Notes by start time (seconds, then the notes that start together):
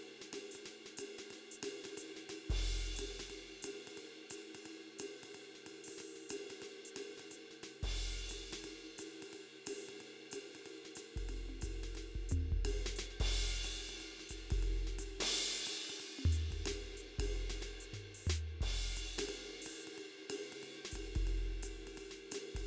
0.22 snare
0.33 snare, ride
0.52 hi-hat pedal, ride
0.66 snare, ride
0.86 snare
0.98 hi-hat pedal, ride
1.19 snare, ride
1.31 snare, ride
1.52 hi-hat pedal
1.63 snare, ride
1.84 snare, ride
1.98 hi-hat pedal, ride
2.17 snare
2.30 snare, ride
2.50 kick, ride
2.89 snare
2.97 hi-hat pedal, ride
3.19 snare, hi-hat pedal, ride
3.30 ride
3.54 snare
3.63 hi-hat pedal, ride
3.88 ride
3.98 ride
4.31 hi-hat pedal, ride
4.55 ride
4.66 ride
4.99 hi-hat pedal, ride
5.24 ride
5.35 ride
5.55 snare
5.67 ride
5.84 hi-hat pedal
5.89 ride
5.98 snare, ride
6.16 snare
6.30 hi-hat pedal, ride
6.50 snare, ride
6.62 snare, ride
6.85 hi-hat pedal
6.97 snare, ride
7.18 snare, ride
7.32 hi-hat pedal, ride
7.51 snare
7.64 snare, ride
7.83 kick, ride
8.30 hi-hat pedal, ride
8.53 snare, ride
8.65 ride
8.99 hi-hat pedal, ride
9.23 ride
9.33 ride
9.67 hi-hat pedal, ride
9.87 hi-hat pedal, ride
10.01 ride
10.32 hi-hat pedal, ride
10.55 ride
10.66 ride
10.85 snare
10.96 snare, hi-hat pedal, ride
11.17 kick, ride
11.29 high tom, ride
11.37 hi-hat pedal
11.49 high tom
11.62 kick, hi-hat pedal, ride
11.84 snare, ride
11.96 snare, ride
12.16 kick
12.30 floor tom, hi-hat pedal, high tom
12.52 kick
12.65 ride
12.86 snare
12.97 snare, hi-hat pedal
13.11 snare
13.21 kick, ride
13.64 hi-hat pedal, ride
13.90 ride
14.01 ride
14.11 snare
14.20 snare
14.30 kick, hi-hat pedal, ride
14.41 snare
14.51 kick, ride
14.63 ride
14.77 snare
14.87 snare
14.99 hi-hat pedal, ride
15.21 snare, ride
15.58 snare
15.66 hi-hat pedal, ride
15.90 ride
16.00 ride
16.08 hi-hat pedal
16.19 high tom
16.26 floor tom
16.33 hi-hat pedal
16.51 kick, ride
16.66 snare, ride
16.74 hi-hat pedal
16.93 snare
16.97 hi-hat pedal
17.19 kick, ride
17.50 snare, ride
17.62 snare, ride
17.81 hi-hat pedal
17.94 snare, floor tom
18.15 hi-hat pedal
18.27 snare, floor tom
18.37 hi-hat pedal
18.49 snare
18.61 kick, ride
18.88 snare
18.97 hi-hat pedal, ride
19.19 snare, ride
19.29 ride
19.62 hi-hat pedal
19.67 ride
19.88 ride
19.98 ride
20.16 snare
20.30 hi-hat pedal, ride
20.53 ride
20.63 ride
20.74 snare
20.85 snare
20.92 kick, hi-hat pedal, ride
21.16 kick, ride
21.27 ride
21.63 hi-hat pedal, ride
21.87 ride
21.98 ride
22.11 snare
22.32 snare, hi-hat pedal, ride
22.55 kick, ride